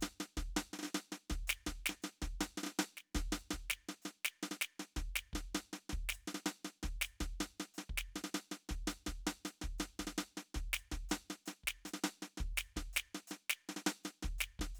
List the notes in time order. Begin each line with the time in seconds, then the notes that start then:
0.01 snare, hi-hat pedal
0.20 snare
0.37 kick, snare
0.57 snare
0.73 snare
0.79 snare
0.83 snare
0.85 snare
0.95 snare
1.12 snare
1.30 kick, snare
1.48 snare, hi-hat pedal
1.67 kick, snare
1.86 snare
1.89 snare
2.02 snare, hi-hat pedal
2.22 kick, snare
2.41 snare, hi-hat pedal
2.58 snare
2.64 snare
2.67 snare
2.79 snare
2.97 snare
3.15 kick, snare
3.32 snare
3.38 hi-hat pedal
3.51 kick, snare
3.70 snare
3.89 snare
4.02 snare, hi-hat pedal
4.25 snare
4.43 snare
4.51 snare
4.62 snare
4.80 snare
4.97 kick, snare
5.16 snare, hi-hat pedal
5.33 kick, snare
5.55 snare
5.73 snare
5.90 kick, snare
6.09 snare, hi-hat pedal
6.28 snare
6.35 snare
6.46 snare
6.65 snare
6.83 kick, snare
7.02 snare, hi-hat pedal
7.21 kick, snare
7.41 snare
7.60 snare
7.74 hi-hat pedal
7.78 snare
7.90 kick
7.98 snare
8.16 snare
8.24 snare
8.34 snare
8.52 snare
8.69 kick, snare
8.88 snare, hi-hat pedal
9.07 kick, snare
9.27 snare
9.45 snare, hi-hat pedal
9.62 kick, snare
9.79 snare, hi-hat pedal
9.99 kick, snare
10.07 snare
10.18 snare
10.37 snare
10.55 kick, snare
10.73 snare, hi-hat pedal
10.92 kick, snare
11.09 snare, hi-hat pedal
11.30 snare
11.46 snare, hi-hat pedal
11.64 kick, snare
11.85 snare, hi-hat pedal
11.94 snare
12.04 snare
12.22 snare
12.38 kick, snare
12.57 snare, hi-hat pedal
12.77 kick, snare
12.93 snare, hi-hat pedal
13.15 snare
13.27 snare, hi-hat pedal
13.50 snare
13.69 snare
13.77 snare
13.87 snare
14.04 snare, hi-hat pedal
14.23 kick, snare
14.39 snare, hi-hat pedal
14.60 kick, snare
14.75 hi-hat pedal